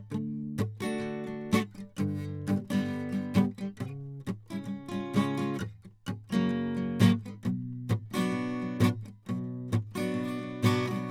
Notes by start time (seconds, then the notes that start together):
0.13 D3 A3
0.60 A3
0.83 D3 A3 D4 F#4
1.00 D3 A3
1.26 D4
1.54 A3 D4 F#4
1.98 G2 D3
2.49 G2 D3 G3 B3
2.71 D3 G3 B3 D4
2.76 G2
2.88 G2 D3
3.14 G2 D3 G3
3.36 C#3 G3 B3
3.82 C#3
4.52 C#3 C#4 E4
4.67 C#3
4.90 C#3 C#4 F4
5.16 C#3 C#4
5.39 C#4 F4
6.34 F#2 C#3 F#3 A#3
6.51 F#2
6.76 C#3 F#3
7.01 C#3 F#3 A#3
7.46 B2 F#3
8.15 B2 B3 D4 F#4
8.19 F#3
8.32 B2 F#3
8.63 F#3
8.82 B2 F#3 B3 D4
9.29 B2 F#3
9.96 F#3 B3 D4 F#4
10.02 B2
10.18 F#3
10.40 B3
10.45 F#3
10.64 B2 F#3 B3 D4 F#4
10.87 B3 D4 F#4
10.93 B2 F#3